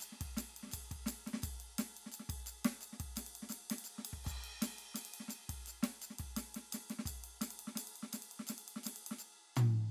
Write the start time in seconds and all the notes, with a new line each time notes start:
0.01 ride, percussion
0.13 snare
0.21 kick, ride
0.37 snare, ride, percussion
0.57 ride
0.64 snare
0.67 snare
0.69 snare
0.71 kick, snare, ride, percussion
0.92 kick, ride
1.07 snare, ride, percussion
1.27 snare, ride
1.34 snare
1.37 snare
1.43 kick, ride, percussion
1.61 ride
1.79 snare, ride, percussion
1.97 ride
2.07 snare
2.12 ride, percussion
2.20 snare
2.30 kick, ride
2.47 ride, percussion
2.65 snare, ride
2.82 ride, percussion
2.93 snare
3.00 kick, ride
3.17 snare, ride, percussion
3.27 ride
3.36 ride
3.43 snare
3.50 snare, ride, percussion
3.71 snare, ride
3.79 ride
3.85 percussion
3.89 ride
3.99 snare
4.06 ride
4.14 kick
4.25 kick, percussion, ride
4.45 ride
4.62 snare, ride, percussion
4.79 ride
4.95 snare, ride, percussion
5.06 ride
5.14 ride
5.21 snare
5.29 snare, ride, percussion
5.50 kick, ride
5.67 ride, percussion
5.83 snare, ride
6.02 ride, percussion
6.11 snare
6.19 kick, ride
6.37 snare, ride, percussion
6.55 snare, ride
6.73 snare, ride, percussion
6.91 snare, ride
6.99 snare
7.06 kick, ride, percussion
7.25 ride
7.42 snare, ride, percussion
7.51 ride
7.60 ride
7.68 snare
7.76 snare, ride, percussion
7.88 ride
7.96 ride
8.03 snare
8.13 snare, ride, percussion
8.23 ride
8.32 ride
8.40 snare
8.48 snare, ride, percussion
8.59 ride
8.69 ride
8.77 snare
8.84 snare, ride, percussion
8.97 ride
9.07 ride
9.12 snare
9.19 percussion
9.57 floor tom, percussion